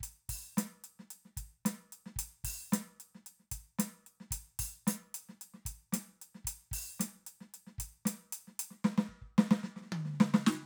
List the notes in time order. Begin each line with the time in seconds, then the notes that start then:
0.01 kick, closed hi-hat
0.29 kick, open hi-hat
0.58 snare, closed hi-hat, hi-hat pedal
0.84 closed hi-hat
0.99 snare
1.11 closed hi-hat
1.25 snare
1.37 kick, closed hi-hat
1.66 snare, closed hi-hat
1.93 closed hi-hat
2.06 snare
2.16 kick, closed hi-hat
2.44 kick, open hi-hat
2.72 snare, closed hi-hat, hi-hat pedal
3.00 closed hi-hat
3.15 snare
3.26 closed hi-hat
3.40 snare
3.52 kick, closed hi-hat
3.79 snare, closed hi-hat
4.07 closed hi-hat
4.20 snare
4.31 kick, closed hi-hat
4.59 kick, open hi-hat
4.87 snare, hi-hat pedal, open hi-hat
5.15 closed hi-hat
5.29 snare
5.41 closed hi-hat
5.54 snare
5.66 kick, closed hi-hat
5.93 snare, closed hi-hat
6.22 closed hi-hat
6.35 snare
6.45 kick, closed hi-hat
6.72 kick, open hi-hat
7.00 snare, closed hi-hat, hi-hat pedal
7.27 closed hi-hat
7.41 snare
7.54 closed hi-hat
7.67 snare
7.79 kick, closed hi-hat
8.06 snare, closed hi-hat
8.33 closed hi-hat
8.48 snare
8.60 closed hi-hat
8.71 snare
8.85 snare
8.98 snare
9.09 kick
9.22 kick
9.38 snare
9.51 snare
9.64 snare
9.76 snare
9.82 snare
9.86 snare
9.91 snare, high tom
10.05 snare
10.09 snare
10.13 snare
10.17 snare
10.20 snare
10.34 snare
10.47 snare